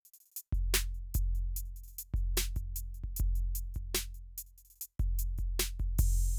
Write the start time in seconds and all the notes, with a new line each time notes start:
0.05 closed hi-hat
0.14 closed hi-hat
0.20 closed hi-hat
0.26 closed hi-hat
0.32 closed hi-hat
0.36 closed hi-hat
0.53 kick, closed hi-hat
0.73 closed hi-hat, kick, snare
0.94 closed hi-hat
1.14 closed hi-hat, kick
1.35 closed hi-hat
1.47 closed hi-hat
1.56 closed hi-hat
1.65 closed hi-hat
1.76 closed hi-hat
1.84 closed hi-hat
1.88 closed hi-hat
1.93 closed hi-hat
1.98 closed hi-hat
2.14 kick, closed hi-hat
2.37 closed hi-hat, snare
2.56 kick, closed hi-hat
2.76 closed hi-hat
2.94 closed hi-hat
3.04 kick
3.16 closed hi-hat, kick
3.35 closed hi-hat
3.55 closed hi-hat
3.74 kick, closed hi-hat
3.95 closed hi-hat, snare
4.14 closed hi-hat
4.38 closed hi-hat
4.46 closed hi-hat
4.58 closed hi-hat
4.65 closed hi-hat
4.70 closed hi-hat
4.75 closed hi-hat
4.81 closed hi-hat
4.99 kick, closed hi-hat
5.19 closed hi-hat
5.38 kick, closed hi-hat
5.59 closed hi-hat, snare
5.79 kick, closed hi-hat
5.99 open hi-hat, kick